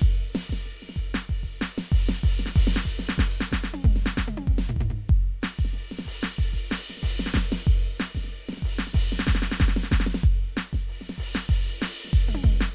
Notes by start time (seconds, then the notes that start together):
0.01 kick, crash
0.34 snare, hi-hat pedal, ride
0.50 kick, snare
0.65 snare, hi-hat pedal, ride
0.82 snare
0.89 snare
0.96 kick, hi-hat pedal, ride
1.14 snare
1.27 kick, hi-hat pedal, ride
1.43 kick, ride
1.61 snare, hi-hat pedal, ride
1.78 snare
1.91 kick, hi-hat pedal, ride
2.09 snare
2.24 kick, ride
2.39 snare
2.46 snare
2.49 snare
2.56 kick, ride
2.67 snare
2.76 snare
2.86 open hi-hat, kick
2.99 snare
3.09 snare
3.18 kick, snare
3.31 open hi-hat
3.41 snare
3.52 kick, snare
3.64 snare
3.74 high tom
3.85 kick, mid tom
3.96 snare
4.06 snare
4.17 kick, snare
4.28 mid tom
4.38 high tom
4.47 kick, mid tom, ride
4.58 snare
4.69 floor tom
4.77 kick
4.81 floor tom
4.90 floor tom
5.07 kick, crash
5.10 kick
5.42 snare, hi-hat pedal, ride
5.59 kick
5.65 snare
5.73 snare, hi-hat pedal, ride
5.91 snare
5.99 snare
6.06 kick, hi-hat pedal, ride
6.23 snare
6.37 kick, ride
6.53 kick, ride
6.70 snare, hi-hat pedal, ride
6.90 snare
6.97 snare
7.02 kick, snare, hi-hat pedal, ride
7.06 snare
7.20 snare
7.26 snare
7.33 kick, snare, hi-hat pedal
7.37 snare
7.52 snare
7.67 kick, hi-hat pedal, crash
7.99 snare, hi-hat pedal, ride
8.15 kick, snare
8.24 snare
8.28 snare, hi-hat pedal, ride
8.49 snare
8.53 snare
8.57 snare, hi-hat pedal
8.63 kick, ride
8.79 snare
8.87 snare
8.94 kick, snare, ride
9.12 snare
9.19 snare
9.27 kick, snare
9.35 snare
9.42 snare
9.52 snare
9.59 kick, snare, hi-hat pedal
9.68 snare
9.76 snare
9.84 snare
9.90 kick, snare, hi-hat pedal
10.00 snare
10.07 snare
10.14 snare
10.23 kick, hi-hat pedal, crash
10.56 snare, hi-hat pedal, ride
10.73 kick, snare
10.88 hi-hat pedal, ride
11.01 snare
11.09 snare
11.18 kick, hi-hat pedal, ride
11.35 snare
11.48 kick, hi-hat pedal, ride
11.64 ride
11.80 snare, hi-hat pedal, ride
12.05 snare
12.08 snare
12.12 kick, snare, hi-hat pedal
12.28 mid tom
12.35 high tom
12.44 kick, hi-hat pedal, mid tom
12.61 snare